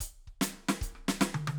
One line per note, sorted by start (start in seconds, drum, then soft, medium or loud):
0.00 closed hi-hat loud
0.00 kick soft
0.27 kick soft
0.41 closed hi-hat loud
0.41 snare loud
0.68 snare loud
0.81 closed hi-hat medium
0.81 kick medium
0.95 cross-stick soft
1.08 snare loud
1.21 snare loud
1.34 high tom loud
1.47 high tom loud